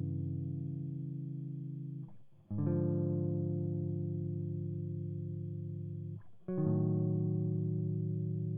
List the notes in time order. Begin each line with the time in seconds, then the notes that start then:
2.52 G#2
2.59 D3
2.67 F3
6.49 F#3
6.58 D#3
6.67 A2